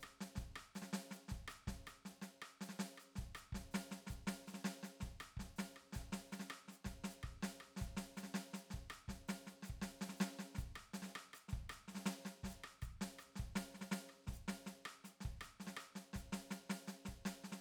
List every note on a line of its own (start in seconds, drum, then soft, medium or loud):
0.01 cross-stick soft
0.01 hi-hat pedal soft
0.21 snare soft
0.36 kick soft
0.36 snare soft
0.36 hi-hat pedal soft
0.56 cross-stick medium
0.76 snare soft
0.76 hi-hat pedal soft
0.83 snare soft
0.94 snare medium
1.12 snare soft
1.12 hi-hat pedal soft
1.29 kick soft
1.29 snare soft
1.49 cross-stick medium
1.49 hi-hat pedal soft
1.68 kick soft
1.68 snare soft
1.87 cross-stick soft
1.87 hi-hat pedal soft
2.06 snare soft
2.22 snare soft
2.22 hi-hat pedal soft
2.43 cross-stick medium
2.61 snare soft
2.61 hi-hat pedal soft
2.70 snare soft
2.80 snare medium
2.98 cross-stick soft
2.98 hi-hat pedal soft
3.16 kick soft
3.16 snare soft
3.36 cross-stick medium
3.36 hi-hat pedal soft
3.53 kick soft
3.53 snare soft
3.72 snare medium
3.72 hi-hat pedal soft
3.92 snare soft
4.07 kick soft
4.07 snare soft
4.07 hi-hat pedal soft
4.28 snare medium
4.48 snare soft
4.48 hi-hat pedal soft
4.55 snare soft
4.65 snare medium
4.84 snare soft
4.84 hi-hat pedal soft
5.01 kick soft
5.01 snare soft
5.21 cross-stick medium
5.21 hi-hat pedal soft
5.38 kick soft
5.38 snare soft
5.57 snare medium
5.57 hi-hat pedal soft
5.77 cross-stick soft
5.93 snare soft
5.93 hi-hat pedal soft
5.95 kick soft
5.95 snare soft
6.13 snare medium
6.33 snare soft
6.33 hi-hat pedal soft
6.40 snare soft
6.51 cross-stick medium
6.69 snare soft
6.73 hi-hat pedal soft
6.85 kick soft
6.85 snare soft
7.05 snare medium
7.11 hi-hat pedal soft
7.24 kick soft
7.24 cross-stick soft
7.43 snare medium
7.49 hi-hat pedal soft
7.61 cross-stick soft
7.77 snare soft
7.79 kick soft
7.79 snare soft
7.79 hi-hat pedal soft
7.97 snare medium
8.18 snare soft
8.18 hi-hat pedal soft
8.24 snare soft
8.35 snare medium
8.54 snare soft
8.54 hi-hat pedal soft
8.71 kick soft
8.71 snare soft
8.91 cross-stick medium
8.91 hi-hat pedal soft
9.09 kick soft
9.09 snare soft
9.29 snare medium
9.29 hi-hat pedal soft
9.47 snare soft
9.63 snare soft
9.63 hi-hat pedal soft
9.70 kick soft
9.82 snare medium
10.02 snare medium
10.10 snare soft
10.17 snare medium
10.17 hi-hat pedal soft
10.40 snare soft
10.55 kick soft
10.55 snare soft
10.55 hi-hat pedal soft
10.76 cross-stick medium
10.94 snare soft
10.94 hi-hat pedal soft
11.03 snare soft
11.16 cross-stick medium
11.34 cross-stick soft
11.34 hi-hat pedal soft
11.49 snare soft
11.53 kick soft
11.70 cross-stick medium
11.70 hi-hat pedal soft
11.89 snare soft
11.95 snare soft
12.06 snare medium
12.06 hi-hat pedal soft
12.26 snare soft
12.44 kick soft
12.44 snare soft
12.46 snare soft
12.46 hi-hat pedal soft
12.64 cross-stick medium
12.82 kick soft
12.82 cross-stick soft
12.82 hi-hat pedal soft
13.02 snare medium
13.19 cross-stick soft
13.19 hi-hat pedal soft
13.36 kick soft
13.36 snare soft
13.56 snare medium
13.56 hi-hat pedal soft
13.75 snare soft
13.82 snare soft
13.92 snare medium
13.92 hi-hat pedal soft
14.10 cross-stick soft
14.28 kick soft
14.28 snare soft
14.34 hi-hat pedal soft
14.49 snare medium
14.67 snare soft
14.67 hi-hat pedal soft
14.86 cross-stick medium
15.05 snare soft
15.05 hi-hat pedal soft
15.21 snare soft
15.26 kick soft
15.42 cross-stick medium
15.42 hi-hat pedal soft
15.60 snare soft
15.68 snare soft
15.77 cross-stick medium
15.77 hi-hat pedal soft
15.96 snare soft
16.14 kick soft
16.14 snare soft
16.14 hi-hat pedal soft
16.21 kick soft
16.33 snare medium
16.51 snare medium
16.51 hi-hat pedal soft
16.70 snare medium
16.88 snare soft
16.88 hi-hat pedal soft
17.06 kick soft
17.06 snare soft
17.26 snare medium
17.26 hi-hat pedal soft
17.45 snare soft
17.53 snare soft